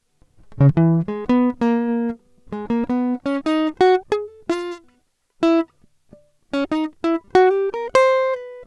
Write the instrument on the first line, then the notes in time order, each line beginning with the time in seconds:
acoustic guitar
0.62 C#3
0.78 E3
1.09 G#3
1.30 B3
1.62 A#3
2.53 G#3
2.71 A#3
2.91 B3
3.26 C#4
3.47 D#4
3.81 F#4
4.12 G#4
4.50 F4
5.43 E4
6.54 C#4
6.72 D#4
7.05 E4
7.36 F#4
7.50 G4
7.75 A#4
7.96 C5
8.35 B4